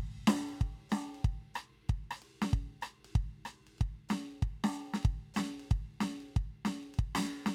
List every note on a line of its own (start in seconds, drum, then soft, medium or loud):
0.18 kick soft
0.27 snare loud
0.27 ride medium
0.49 ride medium
0.61 kick medium
0.61 ride soft
0.89 snare medium
0.89 hi-hat pedal soft
0.89 ride soft
1.14 ride soft
1.24 kick medium
1.24 ride soft
1.54 cross-stick medium
1.54 hi-hat pedal soft
1.89 kick medium
1.89 ride soft
2.03 kick soft
2.11 cross-stick medium
2.16 hi-hat pedal medium
2.22 ride medium
2.42 snare medium
2.51 kick medium
2.51 ride soft
2.81 cross-stick medium
2.81 hi-hat pedal medium
3.04 ride soft
3.15 kick medium
3.45 cross-stick medium
3.45 hi-hat pedal medium
3.45 ride soft
3.67 ride soft
3.78 kick medium
3.78 ride soft
4.09 snare medium
4.09 hi-hat pedal medium
4.09 ride soft
4.31 ride soft
4.42 kick soft
4.42 ride soft
4.64 snare loud
4.64 hi-hat pedal medium
4.75 ride soft
4.94 snare medium
5.03 kick medium
5.03 ride soft
5.34 snare loud
5.34 hi-hat pedal medium
5.34 ride soft
5.59 ride soft
5.71 kick medium
5.71 ride soft
6.00 snare loud
6.00 hi-hat pedal medium
6.00 ride soft
6.20 ride soft
6.36 kick medium
6.65 snare medium
6.65 hi-hat pedal medium
6.65 ride soft
6.83 ride soft
6.94 ride soft
6.99 kick medium
7.15 snare loud
7.20 hi-hat pedal medium
7.27 ride soft
7.46 snare medium